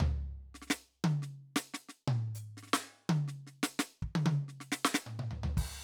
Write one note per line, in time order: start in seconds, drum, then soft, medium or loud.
0.00 kick soft
0.00 floor tom loud
0.54 snare soft
0.62 snare soft
0.67 snare soft
0.70 snare loud
1.04 high tom loud
1.22 snare soft
1.56 snare loud
1.74 snare medium
1.89 snare soft
2.08 mid tom loud
2.35 hi-hat pedal medium
2.57 snare soft
2.63 snare soft
2.67 snare soft
2.73 snare loud
3.09 high tom loud
3.28 snare soft
3.47 snare soft
3.63 snare loud
3.79 snare loud
4.02 kick soft
4.15 high tom loud
4.26 high tom loud
4.48 snare soft
4.60 snare soft
4.72 snare loud
4.85 snare loud
4.94 snare loud
5.06 mid tom medium
5.19 mid tom medium
5.31 floor tom medium
5.43 floor tom medium
5.57 kick medium
5.57 crash medium